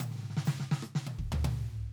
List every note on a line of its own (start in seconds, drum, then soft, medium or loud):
0.03 high tom loud
0.03 percussion medium
0.12 snare soft
0.16 snare soft
0.20 snare soft
0.24 snare soft
0.31 snare soft
0.38 snare medium
0.46 snare medium
0.46 percussion medium
0.61 snare medium
0.72 snare medium
0.83 cross-stick medium
0.96 snare medium
1.07 high tom medium
1.19 kick medium
1.33 floor tom loud
1.45 high tom loud